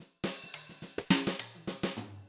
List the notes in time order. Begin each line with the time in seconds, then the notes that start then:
0.00 snare, open hi-hat
0.24 open hi-hat, snare
0.43 snare
0.54 high tom
0.69 snare
0.82 snare
0.98 open hi-hat, high tom
1.10 snare
1.27 snare
1.39 mid tom
1.55 high tom
1.67 snare
1.83 snare
1.97 floor tom